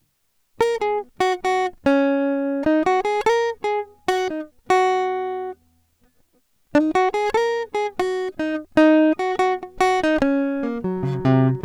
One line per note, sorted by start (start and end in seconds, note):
0.61 0.80 A#4
0.83 1.06 G#4
1.21 1.39 F#4
1.46 1.74 F#4
1.87 2.64 C#4
2.64 2.87 D#4
2.88 3.04 F#4
3.06 3.23 G#4
3.27 3.57 A#4
3.65 3.90 G#4
4.09 4.35 F#4
4.32 4.46 D#4
4.71 5.57 F#4
6.76 6.94 D#4
6.96 7.12 F#4
7.15 7.31 G#4
7.35 7.70 A#4
7.76 7.95 G#4
8.00 8.35 F#4
8.40 8.67 D#4
8.78 9.16 D#4
9.20 9.36 F#4
9.40 9.60 F#4
9.64 9.77 F#4
9.81 10.06 F#4
10.05 10.21 D#4
10.23 10.73 C#4
10.86 11.65 F#3
11.04 11.22 C#3
11.26 11.61 C3